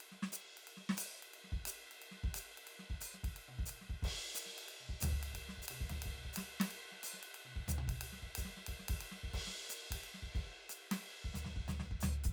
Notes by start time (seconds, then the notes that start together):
0.01 ride
0.12 snare
0.23 snare
0.33 hi-hat pedal, ride
0.58 ride
0.68 ride
0.77 snare
0.90 snare
0.98 hi-hat pedal, ride
1.23 ride
1.34 ride
1.45 snare
1.53 kick
1.66 hi-hat pedal, ride
1.92 ride
2.02 ride
2.12 snare
2.24 kick
2.35 hi-hat pedal, ride
2.58 ride
2.68 ride
2.80 snare
2.90 kick
3.01 hi-hat pedal, ride
3.15 snare
3.24 kick, ride
3.37 ride
3.49 high tom
3.59 kick
3.66 hi-hat pedal, ride
3.82 snare
3.90 kick
4.03 kick, ride
4.35 hi-hat pedal, ride
4.46 snare
4.59 ride
4.69 ride
4.81 high tom
4.89 kick
5.01 floor tom, hi-hat pedal, ride
5.12 kick
5.23 ride
5.34 kick, ride
5.49 snare
5.58 kick
5.63 hi-hat pedal
5.69 high tom, ride
5.81 kick
5.90 floor tom, ride
6.03 kick, ride
6.15 high tom
6.25 kick
6.34 hi-hat pedal, ride
6.38 snare
6.61 snare, ride
6.71 ride
6.92 snare
7.04 hi-hat pedal, ride
7.14 snare
7.23 ride
7.35 ride
7.46 high tom
7.56 kick
7.68 floor tom, hi-hat pedal
7.79 high tom
7.88 kick, ride
8.02 ride
8.13 snare
8.23 kick
8.36 kick, hi-hat pedal, ride
8.45 snare
8.57 snare
8.67 kick, ride
8.80 snare
8.89 kick, ride
9.01 ride
9.12 snare
9.24 kick
9.34 kick, ride
9.47 snare
9.70 hi-hat pedal, ride
9.91 kick, ride
10.04 ride
10.15 snare
10.23 kick
10.35 kick, ride
10.51 snare
10.70 hi-hat pedal, ride
10.92 snare, ride
11.02 ride
11.25 kick
11.35 snare, floor tom, hi-hat pedal
11.45 snare, floor tom
11.57 kick
11.68 snare, floor tom, hi-hat pedal
11.80 snare, floor tom
11.91 kick
12.01 snare, floor tom, hi-hat pedal
12.24 open hi-hat, kick